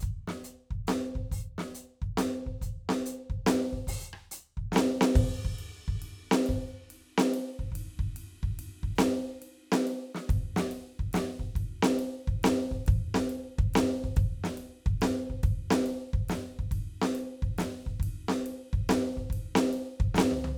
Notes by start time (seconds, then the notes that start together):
0.01 closed hi-hat, kick
0.28 snare
0.45 closed hi-hat
0.71 kick
0.81 kick
0.88 closed hi-hat, snare
1.16 kick
1.24 snare
1.32 open hi-hat, kick
1.59 snare
1.76 closed hi-hat
2.03 kick
2.18 closed hi-hat, snare
2.47 kick
2.62 closed hi-hat, kick
2.90 snare
3.07 closed hi-hat
3.31 kick
3.47 closed hi-hat, snare
3.73 kick
3.88 open hi-hat, kick
4.14 cross-stick
4.32 closed hi-hat
4.58 kick
4.73 snare, hi-hat pedal
4.77 snare
5.02 snare
5.16 kick, crash
5.46 kick
5.59 ride
5.89 kick
6.03 ride
6.32 snare
6.47 kick, ride
6.67 hi-hat pedal
6.90 hi-hat pedal, ride
7.19 snare
7.35 ride
7.60 kick
7.73 kick, ride
8.00 kick
8.17 ride
8.44 kick
8.60 kick, ride
8.84 kick
8.96 snare, hi-hat pedal, ride
9.43 ride
9.73 snare
9.88 ride
10.16 snare
10.30 kick, ride
10.57 snare
10.72 ride
11.00 kick
11.14 snare, ride
11.40 kick
11.56 kick, ride
11.83 snare
12.00 ride
12.28 kick
12.44 snare, ride
12.72 kick
12.87 kick, ride
13.15 snare
13.30 ride
13.59 kick
13.75 snare, ride
14.05 kick
14.17 kick, ride
14.45 snare
14.58 ride
14.87 kick
15.02 snare, ride
15.31 kick
15.44 kick, ride
15.71 snare
15.87 ride
16.14 kick
16.29 snare, ride
16.60 kick
16.72 kick, ride
17.03 snare
17.16 ride
17.43 kick
17.59 snare, ride
17.87 kick
18.01 kick, ride
18.29 snare
18.47 ride
18.74 kick
18.90 snare, ride
19.18 kick
19.31 kick, ride
19.56 snare
19.74 ride
20.01 kick
20.15 snare
20.19 snare
20.32 floor tom
20.45 floor tom